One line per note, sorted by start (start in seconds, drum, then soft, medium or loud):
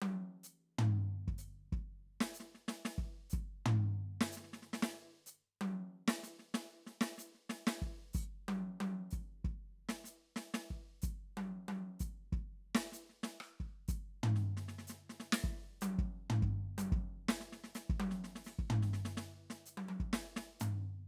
0.02 high tom loud
0.43 hi-hat pedal medium
0.79 floor tom loud
1.28 kick soft
1.38 hi-hat pedal medium
1.72 kick medium
2.21 snare medium
2.34 hi-hat pedal medium
2.40 snare soft
2.54 snare soft
2.68 snare medium
2.85 snare medium
2.98 kick soft
3.30 kick medium
3.30 hi-hat pedal medium
3.66 floor tom loud
4.21 snare medium
4.32 hi-hat pedal medium
4.37 snare soft
4.44 snare soft
4.53 snare soft
4.62 snare soft
4.73 snare medium
4.82 snare medium
5.26 hi-hat pedal medium
5.61 high tom loud
6.08 snare loud
6.23 snare soft
6.23 hi-hat pedal medium
6.39 snare soft
6.54 snare medium
6.87 snare soft
7.01 snare medium
7.18 snare soft
7.18 hi-hat pedal medium
7.34 snare soft
7.49 snare medium
7.67 snare medium
7.82 kick soft
8.13 kick medium
8.13 hi-hat pedal medium
8.48 open hi-hat soft
8.48 high tom loud
8.80 closed hi-hat soft
8.80 high tom loud
9.11 kick soft
9.11 hi-hat pedal medium
9.45 kick soft
9.89 snare medium
10.04 snare soft
10.04 hi-hat pedal medium
10.36 snare medium
10.54 snare medium
10.70 kick soft
11.02 kick soft
11.02 hi-hat pedal medium
11.37 closed hi-hat soft
11.37 high tom medium
11.68 closed hi-hat soft
11.68 high tom medium
12.00 kick soft
12.00 hi-hat pedal medium
12.33 kick medium
12.75 snare loud
12.92 snare soft
12.92 hi-hat pedal medium
13.09 snare soft
13.23 snare medium
13.40 cross-stick medium
13.60 kick soft
13.88 kick medium
13.88 hi-hat pedal medium
14.23 floor tom loud
14.36 snare soft
14.57 snare soft
14.68 snare soft
14.78 snare soft
14.87 snare soft
14.87 hi-hat pedal medium
15.09 snare soft
15.20 snare soft
15.32 snare loud
15.44 kick medium
15.81 hi-hat pedal medium
15.81 high tom loud
15.99 kick medium
16.30 floor tom loud
16.42 kick medium
16.78 hi-hat pedal medium
16.78 high tom loud
16.92 kick medium
17.29 snare loud
17.41 snare soft
17.52 snare soft
17.64 snare soft
17.75 snare medium
17.75 hi-hat pedal medium
17.90 kick medium
18.00 high tom loud
18.11 snare soft
18.24 snare soft
18.35 snare soft
18.44 snare soft
18.44 hi-hat pedal soft
18.59 kick soft
18.70 floor tom loud
18.82 snare soft
18.93 snare soft
19.05 snare medium
19.17 snare medium
19.50 snare soft
19.66 hi-hat pedal medium
19.77 high tom medium
19.89 high tom medium
20.00 kick soft
20.13 snare medium
20.36 snare medium
20.60 floor tom loud
20.60 hi-hat pedal medium